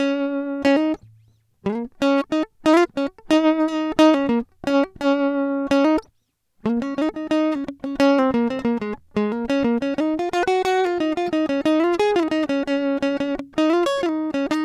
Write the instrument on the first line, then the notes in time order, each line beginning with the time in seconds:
acoustic guitar
0.01 C#4
0.66 C#4
0.77 D#4
1.67 A#3
2.02 C#4
2.33 D#4
2.66 E4
2.98 C#4
3.31 D#4
3.99 D#4
4.15 C#4
4.30 A#3
4.68 C#4
5.02 C#4
5.72 C#4
6.66 A#3
6.83 C#4
6.99 D#4
7.09 D#4
7.32 D#4
7.53 C#4
7.69 C#4
7.85 C#4
8.00 C#4
8.19 C4
8.35 A#3
8.51 C4
8.66 A#3
8.83 G#3
9.17 G#3
9.33 A#3
9.50 C#4
9.65 A#3
9.83 C#4
9.99 D#4
10.20 F4
10.34 F4
10.48 F#4
10.66 F#4
10.86 F4
11.01 D#4
11.18 F4
11.34 D#4
11.51 C#4
11.66 D#4
11.80 F4
12.00 G#4
12.17 E4
12.32 D#4
12.50 C#4
12.68 C#4
13.03 C#4
13.21 C#4
13.59 D#4
13.71 F4
13.87 C#5
14.04 D#4
14.35 C#4
14.52 D#4